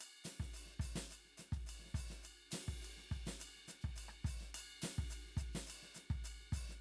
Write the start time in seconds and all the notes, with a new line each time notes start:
0.00 hi-hat pedal, ride bell
0.24 snare, hi-hat pedal, ride
0.40 kick, snare
0.53 hi-hat pedal, ride bell
0.66 snare
0.79 kick, hi-hat pedal, ride
0.95 snare, ride
1.10 hi-hat pedal, ride bell
1.25 snare
1.37 snare, hi-hat pedal, ride
1.52 kick, ride
1.66 hi-hat pedal, ride bell
1.80 snare
1.84 snare
1.86 snare
1.94 kick, hi-hat pedal, ride
2.08 snare, ride
2.23 hi-hat pedal, ride bell
2.51 snare, hi-hat pedal, ride
2.67 kick, snare
2.81 hi-hat pedal, ride bell
2.98 snare
3.11 kick, hi-hat pedal, ride
3.26 snare, ride
3.39 hi-hat pedal, ride bell
3.56 snare
3.68 snare, hi-hat pedal, ride
3.81 kick, ride
3.96 hi-hat pedal, ride bell
4.08 cross-stick
4.24 kick, hi-hat pedal, ride
4.39 snare, ride
4.54 hi-hat pedal, ride bell
4.82 snare, hi-hat pedal, ride
4.98 kick, snare
5.10 hi-hat pedal, ride bell
5.26 snare
5.37 kick, hi-hat pedal, ride
5.53 snare, ride
5.66 hi-hat pedal, ride bell
5.83 snare
5.94 snare, hi-hat pedal, ride
6.10 kick, ride
6.24 hi-hat pedal, ride bell
6.36 snare
6.39 snare
6.42 snare
6.52 kick, hi-hat pedal, ride
6.67 snare, ride